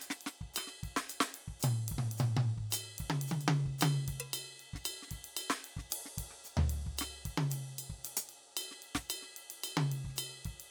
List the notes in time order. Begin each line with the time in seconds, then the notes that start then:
0.01 hi-hat pedal, ride bell
0.10 snare
0.21 ride
0.26 snare
0.41 kick
0.54 hi-hat pedal, ride bell
0.58 cross-stick
0.67 snare
0.83 kick, ride
0.96 snare
1.09 hi-hat pedal, ride bell
1.20 snare
1.34 ride
1.48 kick
1.60 hi-hat pedal, ride bell
1.64 mid tom
1.88 kick, ride
1.97 kick, mid tom
2.11 ride
2.17 hi-hat pedal, mid tom
2.37 mid tom
2.57 kick
2.70 closed hi-hat, hi-hat pedal, ride bell
2.98 kick, ride
3.06 kick
3.10 high tom
3.21 ride
3.27 hi-hat pedal, high tom
3.41 ride bell
3.48 high tom
3.66 kick
3.78 hi-hat pedal, ride bell
3.82 high tom
4.08 kick, ride
4.20 percussion
4.33 hi-hat pedal, ride bell
4.59 ride
4.73 kick, snare
4.84 hi-hat pedal, ride bell
5.02 snare
5.07 kick, snare, ride
5.12 snare
5.16 snare
5.21 snare, ride
5.25 snare
5.37 hi-hat pedal, ride bell
5.50 snare
5.64 ride
5.76 kick, snare
5.90 hi-hat pedal, ride
6.05 snare
6.18 kick, ride
6.31 cross-stick
6.44 hi-hat pedal
6.57 floor tom
6.70 ride
6.86 kick
6.97 snare, hi-hat pedal, ride bell
7.25 kick, ride
7.37 high tom
7.50 hi-hat pedal, ride
7.78 ride bell
7.90 kick
8.04 hi-hat pedal, ride
8.17 closed hi-hat
8.29 ride
8.57 hi-hat pedal, ride bell
8.71 snare
8.82 ride
8.95 kick, snare
9.09 hi-hat pedal, ride bell
9.22 snare
9.36 ride
9.50 ride
9.64 hi-hat pedal, ride bell
9.77 high tom
9.92 ride
10.04 kick
10.09 snare
10.16 hi-hat pedal, ride bell
10.45 kick, ride
10.60 ride